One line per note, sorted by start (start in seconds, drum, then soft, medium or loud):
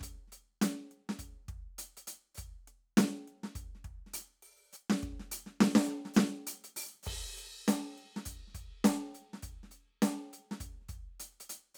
0.01 closed hi-hat medium
0.01 kick soft
0.28 snare soft
0.32 closed hi-hat medium
0.62 closed hi-hat loud
0.62 snare loud
0.91 closed hi-hat soft
1.09 snare medium
1.19 closed hi-hat medium
1.19 kick soft
1.49 kick soft
1.49 closed hi-hat soft
1.79 closed hi-hat loud
1.97 closed hi-hat medium
2.08 closed hi-hat loud
2.35 closed hi-hat medium
2.35 kick soft
2.35 hi-hat pedal medium
2.68 closed hi-hat soft
2.97 closed hi-hat loud
2.97 snare loud
3.28 closed hi-hat soft
3.44 snare soft
3.56 closed hi-hat medium
3.56 kick soft
3.75 snare soft
3.85 kick soft
3.85 closed hi-hat soft
4.07 snare soft
4.12 closed hi-hat loud
4.12 snare soft
4.43 open hi-hat medium
4.73 hi-hat pedal medium
4.90 snare loud
5.03 kick soft
5.03 closed hi-hat soft
5.09 kick soft
5.12 kick soft
5.20 snare soft
5.24 kick soft
5.32 closed hi-hat loud
5.47 snare soft
5.61 snare loud
5.75 snare loud
5.85 hi-hat pedal medium
5.89 snare soft
6.06 snare soft
6.14 snare loud
6.14 hi-hat pedal medium
6.47 closed hi-hat loud
6.64 closed hi-hat medium
6.77 open hi-hat loud
7.03 kick medium
7.03 hi-hat pedal medium
7.03 crash loud
7.13 kick soft
7.17 kick soft
7.38 closed hi-hat soft
7.68 closed hi-hat loud
7.68 snare medium
7.98 closed hi-hat soft
8.17 snare medium
8.26 closed hi-hat medium
8.26 kick soft
8.48 snare soft
8.55 closed hi-hat medium
8.55 kick soft
8.63 kick soft
8.85 closed hi-hat loud
8.85 snare loud
9.15 closed hi-hat medium
9.34 snare soft
9.43 closed hi-hat medium
9.43 kick soft
9.63 snare soft
9.70 closed hi-hat soft
9.70 snare soft
10.02 closed hi-hat loud
10.02 snare medium
10.16 snare soft
10.33 closed hi-hat medium
10.51 snare medium
10.61 closed hi-hat medium
10.61 kick soft
10.66 kick soft
10.81 snare soft
10.89 closed hi-hat soft
10.89 kick soft
10.95 kick soft
11.20 closed hi-hat loud
11.33 closed hi-hat soft
11.40 closed hi-hat medium
11.50 closed hi-hat loud
11.75 hi-hat pedal medium